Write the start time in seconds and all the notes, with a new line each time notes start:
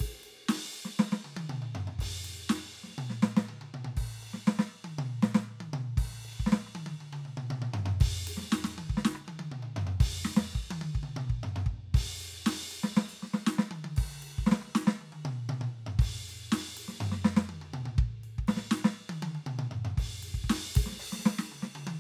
0.01 kick, ride
0.25 ride
0.50 snare, ride
0.75 ride bell
0.86 snare
1.01 snare
1.14 snare
1.26 high tom
1.38 high tom
1.51 mid tom
1.63 mid tom
1.76 floor tom
1.89 floor tom
2.00 kick, ride
2.26 ride
2.51 snare, ride
2.72 ride
2.85 snare
2.89 snare
2.92 snare
2.99 mid tom
3.11 snare
3.24 snare
3.38 snare
3.50 high tom
3.63 high tom
3.75 mid tom
3.86 mid tom
3.98 kick, crash
4.23 ride
4.35 snare
4.49 snare
4.60 snare
4.86 high tom
5.00 mid tom
5.24 snare
5.36 snare
5.50 high tom
5.62 high tom
5.75 mid tom
5.99 kick, crash
6.25 ride
6.41 kick
6.48 snare
6.54 snare
6.68 cross-stick
6.76 high tom
6.88 high tom
7.02 high tom
7.14 high tom
7.26 mid tom
7.39 mid tom
7.52 mid tom
7.63 mid tom
7.75 floor tom
7.87 floor tom
8.02 kick, ride
8.29 ride
8.38 snare
8.44 snare
8.53 snare
8.66 snare
8.79 high tom
8.91 kick
8.99 snare
9.06 snare
9.16 cross-stick
9.29 high tom
9.41 high tom
9.53 mid tom
9.64 mid tom
9.78 floor tom
9.88 floor tom
10.02 kick, ride
10.26 snare
10.38 snare
10.57 kick
10.72 high tom
10.83 high tom
10.96 kick
11.04 mid tom
11.18 mid tom
11.31 kick
11.45 floor tom
11.57 floor tom
11.67 kick
11.92 kick, cross-stick, ride
12.22 ride
12.47 snare, ride
12.72 ride
12.85 snare
12.98 snare
13.09 open hi-hat
13.24 snare
13.35 snare
13.48 snare
13.60 snare
13.72 high tom
13.86 high tom
13.98 kick, crash
14.24 ride
14.40 kick
14.48 snare
14.53 snare
14.63 cross-stick
14.68 snare
14.76 snare
14.89 snare
15.02 high tom
15.14 high tom
15.26 mid tom
15.51 mid tom
15.62 mid tom
15.88 floor tom
16.00 kick, ride
16.31 ride
16.53 snare, ride
16.78 ride
16.89 snare
16.95 snare
17.02 floor tom
17.13 snare
17.26 snare
17.38 snare
17.50 high tom
17.63 high tom
17.75 mid tom
17.87 mid tom
17.99 kick
18.25 ride bell
18.40 kick
18.49 snare, ride
18.58 snare
18.64 snare
18.72 snare
18.86 snare
19.11 high tom
19.24 high tom
19.36 high tom
19.48 mid tom
19.60 mid tom
19.73 floor tom
19.86 floor tom
19.99 kick, ride
20.24 ride
20.36 kick
20.45 kick
20.51 snare, ride
20.77 kick, ride
20.87 snare
20.93 snare
21.00 crash
21.14 snare
21.20 snare
21.27 snare
21.40 snare
21.53 high tom
21.64 snare
21.77 high tom
21.88 high tom